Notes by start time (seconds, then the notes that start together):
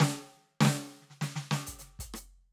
0.00 snare
0.61 snare
0.65 snare
1.02 snare
1.10 snare
1.21 snare, hi-hat pedal
1.36 snare
1.51 snare
1.56 cross-stick
1.67 closed hi-hat, kick
1.79 snare, hi-hat pedal
1.99 closed hi-hat, kick
2.14 cross-stick, hi-hat pedal